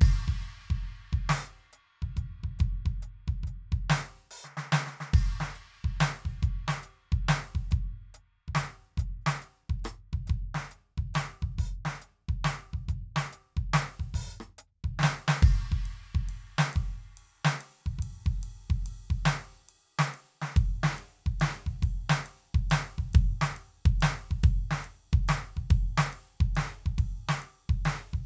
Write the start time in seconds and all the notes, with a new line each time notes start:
0.01 kick, crash
0.28 kick
0.42 closed hi-hat
0.70 kick
1.13 kick
1.29 open hi-hat, snare
1.42 hi-hat pedal
1.73 closed hi-hat
1.87 closed hi-hat
2.02 kick
2.17 closed hi-hat, kick
2.44 kick
2.59 closed hi-hat, kick
2.86 kick
3.03 closed hi-hat
3.28 kick
3.43 kick, closed hi-hat
3.72 kick
3.90 open hi-hat, snare
4.00 hi-hat pedal
4.31 open hi-hat
4.44 snare, hi-hat pedal
4.57 snare
4.72 snare
4.86 snare
5.00 snare
5.14 kick, crash
5.40 snare
5.56 closed hi-hat
5.84 kick
6.00 open hi-hat, snare
6.25 kick
6.43 closed hi-hat, kick
6.68 snare
6.83 closed hi-hat
7.12 kick
7.29 closed hi-hat, snare
7.55 kick
7.71 closed hi-hat, kick
8.14 closed hi-hat
8.48 kick
8.55 closed hi-hat, snare
8.98 closed hi-hat, kick
9.21 hi-hat pedal
9.26 snare
9.42 closed hi-hat
9.70 kick
9.79 kick
9.84 closed hi-hat, cross-stick
10.13 kick
10.27 closed hi-hat, kick
10.55 snare
10.71 closed hi-hat
10.98 kick
11.07 kick
11.14 closed hi-hat, snare
11.42 kick
11.50 snare
11.59 open hi-hat, kick
11.85 snare
12.02 closed hi-hat
12.29 kick
12.44 closed hi-hat, snare
12.73 kick
12.89 closed hi-hat, kick
13.16 snare
13.33 closed hi-hat
13.57 kick
13.74 closed hi-hat, snare
14.00 kick
14.14 open hi-hat, kick
14.40 cross-stick
14.58 closed hi-hat
14.84 kick
14.99 snare, hi-hat pedal
15.03 snare
15.28 snare
15.43 kick, crash
15.72 kick
15.86 ride
16.15 kick
16.29 ride
16.58 snare
16.73 kick, ride
16.93 hi-hat pedal
17.17 hi-hat pedal, ride
17.45 snare
17.61 ride
17.86 kick
17.99 kick, ride
18.26 kick
18.43 ride
18.70 kick
18.86 kick, ride
19.10 kick
19.23 snare, hi-hat pedal, ride
19.69 ride
19.99 snare
20.14 ride
20.42 snare
20.56 kick, ride
20.83 snare
20.98 ride
21.26 kick
21.40 snare, ride
21.66 kick
21.83 kick, ride
22.10 snare
22.26 ride
22.54 kick
22.70 snare, ride
22.98 kick
23.14 kick, ride
23.41 snare
23.57 ride
23.86 kick
24.01 snare, ride
24.31 kick
24.44 kick, ride
24.71 snare
24.84 ride
25.13 kick
25.28 snare, ride
25.57 kick
25.70 kick, ride
25.98 snare
26.13 ride
26.40 kick
26.56 snare, ride
26.86 kick
26.98 kick, ride
27.29 snare
27.42 ride
27.69 kick
27.85 snare, ride
28.13 kick